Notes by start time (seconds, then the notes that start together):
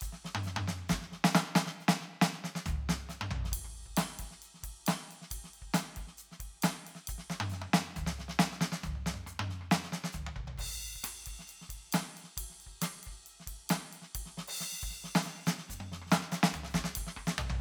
0.01 kick, hi-hat pedal, ride
0.09 kick, snare
0.25 snare
0.35 high tom
0.43 snare, hi-hat pedal
0.56 high tom
0.67 snare
0.78 cross-stick
0.89 kick, snare, hi-hat pedal
0.98 kick, snare
1.12 snare
1.24 snare
1.32 snare, hi-hat pedal
1.45 snare
1.55 snare
1.66 snare
1.80 snare, hi-hat pedal
1.88 snare
2.00 snare
2.21 snare, hi-hat pedal
2.32 snare
2.44 snare
2.55 snare
2.66 kick, hi-hat pedal, mid tom
2.81 kick
2.89 snare
3.09 snare, hi-hat pedal
3.21 high tom
3.31 floor tom
3.44 snare
3.52 kick, hi-hat pedal, ride
3.59 kick
3.63 kick, cross-stick
3.73 ride
3.86 kick
3.97 snare, hi-hat pedal, ride
4.19 kick, ride
4.26 kick
4.31 snare
4.41 hi-hat pedal, ride
4.54 snare
4.60 kick, snare, ride
4.85 snare, hi-hat pedal, ride
5.11 ride
5.21 snare
5.30 kick, hi-hat pedal, ride
5.37 kick
5.44 snare
5.53 ride
5.62 kick
5.74 snare, hi-hat pedal, ride
5.83 snare
5.96 kick, ride
6.03 kick, snare
6.17 hi-hat pedal, ride
6.31 snare
6.40 kick, ride
6.45 kick
6.62 snare, hi-hat pedal, ride
6.70 snare
6.87 ride
6.95 snare
7.07 kick, hi-hat pedal, ride
7.16 kick, snare
7.19 kick
7.30 snare
7.40 high tom
7.49 snare, hi-hat pedal
7.62 high tom
7.73 snare
7.87 snare
7.96 kick, hi-hat pedal, mid tom
8.05 kick, snare
8.19 snare
8.28 snare
8.39 snare, hi-hat pedal
8.51 snare
8.61 snare
8.72 snare
8.83 kick, hi-hat pedal, mid tom
8.92 kick, high tom
9.06 snare
9.14 high tom
9.26 cross-stick, hi-hat pedal
9.39 high tom
9.49 snare
9.61 cross-stick
9.71 snare, hi-hat pedal
9.83 snare
9.92 snare
10.04 snare
10.12 kick, hi-hat pedal, mid tom
10.20 kick
10.26 mid tom
10.36 kick, floor tom
10.44 kick, floor tom
10.58 kick, hi-hat pedal, crash, floor tom
10.72 kick
10.95 kick
11.04 cross-stick, hi-hat pedal, ride
11.26 kick, ride
11.33 kick
11.39 snare
11.47 hi-hat pedal, ride
11.61 snare
11.69 kick, ride
11.75 kick
11.92 snare, hi-hat pedal, ride
12.00 snare
12.17 ride
12.24 snare
12.37 kick, hi-hat pedal, ride
12.43 kick
12.49 snare
12.58 snare, ride
12.66 kick
12.71 kick
12.81 snare, hi-hat pedal, ride
13.03 kick, ride
13.14 snare
13.26 hi-hat pedal, ride
13.40 snare
13.47 kick, ride
13.52 kick
13.69 snare, hi-hat pedal, ride
13.93 ride
14.02 snare
14.15 kick, hi-hat pedal, ride
14.21 kick
14.26 snare
14.37 snare
14.48 crash
14.55 hi-hat pedal
14.60 snare
14.72 snare
14.82 kick, hi-hat pedal, ride bell
14.90 kick, snare
14.93 kick, snare
15.04 snare
15.15 snare
15.22 snare, hi-hat pedal
15.46 snare, hi-hat pedal
15.58 snare
15.69 kick, hi-hat pedal, high tom
15.80 closed hi-hat, high tom
15.92 snare
16.02 cross-stick
16.06 snare
16.11 snare, hi-hat pedal
16.21 snare
16.32 snare, hi-hat pedal
16.43 snare
16.52 kick, hi-hat pedal, mid tom
16.63 snare
16.70 snare, hi-hat pedal
16.75 kick
16.80 kick, snare
16.95 kick, hi-hat pedal, ride
17.04 kick
17.06 kick, snare
17.16 kick, cross-stick
17.27 snare
17.37 hi-hat pedal, floor tom
17.50 floor tom